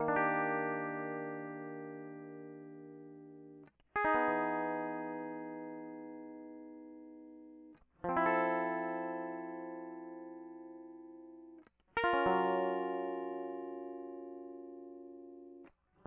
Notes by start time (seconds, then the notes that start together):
0.01 A#3
0.09 D4
0.17 G4
3.97 G#4
4.05 D#4
4.16 B3
4.30 E3
8.06 F3
8.10 C4
8.17 E4
8.27 A4
11.98 A#4
12.05 F4
12.14 C#4
12.28 F#3